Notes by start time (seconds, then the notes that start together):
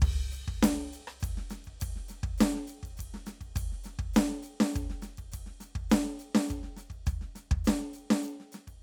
0.01 kick, hi-hat pedal, crash
0.32 hi-hat pedal, ride
0.48 kick
0.62 snare, hi-hat pedal, ride
0.73 snare
0.77 snare
0.93 hi-hat pedal, ride
1.07 cross-stick
1.20 kick, hi-hat pedal
1.24 ride
1.37 snare
1.50 snare, hi-hat pedal, ride
1.64 kick, ride
1.80 kick, hi-hat pedal, ride
1.96 snare
2.08 snare, hi-hat pedal, ride
2.23 kick, ride
2.38 snare, hi-hat pedal, ride
2.55 snare
2.67 hi-hat pedal, ride
2.83 kick, ride
2.97 kick, hi-hat pedal, ride
3.14 snare
3.26 snare, hi-hat pedal, ride
3.41 kick, ride
3.55 kick, hi-hat pedal, ride
3.72 snare
3.84 snare, hi-hat pedal, ride
3.99 kick, ride
4.14 snare, hi-hat pedal, ride
4.31 snare
4.43 hi-hat pedal, ride
4.60 snare
4.73 kick, hi-hat pedal, ride
4.90 snare
5.02 snare, hi-hat pedal, ride
5.18 kick, ride
5.32 kick, hi-hat pedal, ride
5.46 snare
5.60 snare, hi-hat pedal, ride
5.75 kick, ride
5.90 snare, hi-hat pedal, ride
6.05 snare
6.08 snare
6.19 hi-hat pedal
6.35 snare
6.48 kick, hi-hat pedal, ride
6.63 snare
6.77 snare, hi-hat pedal, ride
6.90 kick, ride
7.06 kick, hi-hat pedal, ride
7.21 snare
7.35 snare, hi-hat pedal, ride
7.51 kick, ride
7.64 snare, hi-hat pedal, ride
7.93 hi-hat pedal
7.99 ride
8.10 snare
8.23 hi-hat pedal
8.28 ride
8.40 snare
8.52 snare, hi-hat pedal, ride
8.67 kick, ride